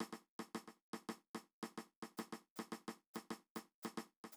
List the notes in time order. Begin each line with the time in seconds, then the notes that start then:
0.01 cross-stick
0.13 cross-stick
0.40 cross-stick
0.55 cross-stick
0.68 cross-stick
0.94 cross-stick
1.09 cross-stick
1.35 cross-stick
1.63 cross-stick
1.78 cross-stick
2.03 cross-stick
2.18 cross-stick, hi-hat pedal
2.33 cross-stick
2.57 cross-stick, hi-hat pedal
2.73 cross-stick
2.89 cross-stick
3.15 cross-stick, hi-hat pedal
3.31 cross-stick
3.56 cross-stick, hi-hat pedal
3.83 cross-stick, hi-hat pedal
3.98 cross-stick
4.25 cross-stick
4.33 hi-hat pedal